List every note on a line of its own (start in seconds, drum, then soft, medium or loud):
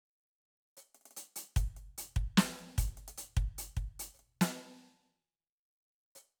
0.77 hi-hat pedal medium
0.95 closed hi-hat soft
1.01 closed hi-hat soft
1.06 closed hi-hat soft
1.11 closed hi-hat soft
1.17 closed hi-hat loud
1.36 closed hi-hat loud
1.56 kick medium
1.56 closed hi-hat medium
1.77 closed hi-hat soft
1.98 closed hi-hat loud
2.16 kick medium
2.16 closed hi-hat soft
2.37 snare loud
2.59 closed hi-hat soft
2.78 closed hi-hat loud
2.78 kick medium
2.88 closed hi-hat soft
2.97 closed hi-hat soft
3.08 closed hi-hat medium
3.18 closed hi-hat loud
3.37 kick medium
3.37 closed hi-hat soft
3.58 closed hi-hat loud
3.77 kick soft
3.77 closed hi-hat soft
3.99 closed hi-hat loud
4.14 hi-hat pedal soft
4.19 closed hi-hat soft
4.41 closed hi-hat loud
4.41 snare loud
6.15 hi-hat pedal medium